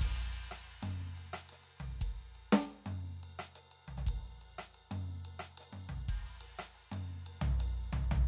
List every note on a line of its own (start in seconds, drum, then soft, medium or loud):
0.02 kick medium
0.02 ride loud
0.33 ride medium
0.51 cross-stick medium
0.51 hi-hat pedal medium
0.65 ride medium
0.83 mid tom loud
0.83 ride loud
1.00 hi-hat pedal soft
1.18 ride medium
1.34 cross-stick medium
1.50 hi-hat pedal medium
1.50 ride loud
1.64 ride medium
1.80 floor tom medium
2.02 kick medium
2.02 ride loud
2.36 ride medium
2.53 snare medium
2.53 hi-hat pedal medium
2.69 ride medium
2.86 mid tom loud
2.86 ride medium
3.24 ride medium
3.39 cross-stick medium
3.56 hi-hat pedal medium
3.56 ride loud
3.72 ride medium
3.88 floor tom medium
3.98 floor tom medium
4.07 kick medium
4.07 ride loud
4.42 ride medium
4.59 cross-stick medium
4.59 hi-hat pedal medium
4.75 ride medium
4.92 mid tom loud
4.92 ride loud
5.25 ride loud
5.40 cross-stick medium
5.58 hi-hat pedal medium
5.58 ride loud
5.73 mid tom medium
5.89 floor tom medium
6.09 kick medium
6.09 ride medium
6.25 ride soft
6.41 ride loud
6.59 cross-stick medium
6.59 hi-hat pedal medium
6.76 ride medium
6.92 mid tom medium
6.92 ride loud
7.27 ride loud
7.42 floor tom loud
7.59 hi-hat pedal medium
7.59 ride loud
7.93 floor tom loud
8.12 floor tom loud